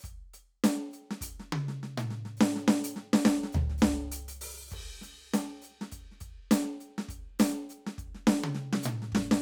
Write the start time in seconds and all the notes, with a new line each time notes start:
0.01 kick, hi-hat pedal
0.05 closed hi-hat
0.10 kick
0.13 kick
0.34 closed hi-hat
0.65 closed hi-hat, snare
0.92 closed hi-hat, hi-hat pedal
1.12 snare
1.22 closed hi-hat, kick
1.28 kick
1.40 snare
1.53 high tom
1.69 snare
1.84 snare
1.98 hi-hat pedal, mid tom
2.11 snare
2.26 snare
2.38 snare, hi-hat pedal
2.57 snare, hi-hat pedal
2.69 snare
2.85 closed hi-hat
2.97 snare
3.14 snare
3.26 kick, snare
3.44 snare
3.53 kick, floor tom, hi-hat pedal
3.61 kick
3.64 kick
3.70 snare
3.79 hi-hat pedal
3.83 kick, snare
4.12 closed hi-hat
4.29 open hi-hat
4.42 open hi-hat
4.47 kick
4.71 kick, hi-hat pedal, crash
4.79 kick
4.82 kick
5.02 closed hi-hat, snare
5.34 closed hi-hat, snare
5.45 snare
5.62 closed hi-hat, hi-hat pedal
5.82 snare
5.93 closed hi-hat, kick
6.12 snare
6.21 closed hi-hat, kick
6.52 closed hi-hat, snare
6.63 snare
6.81 closed hi-hat
6.99 snare
7.09 closed hi-hat, kick
7.15 kick
7.19 kick
7.30 kick
7.40 open hi-hat, snare
7.50 snare
7.70 hi-hat pedal, open hi-hat
7.87 snare
7.99 kick, closed hi-hat
8.05 kick
8.08 kick
8.15 snare
8.28 snare
8.33 snare
8.44 high tom
8.55 snare
8.74 snare
8.84 hi-hat pedal, mid tom
9.03 snare
9.13 kick, snare
9.21 kick
9.32 snare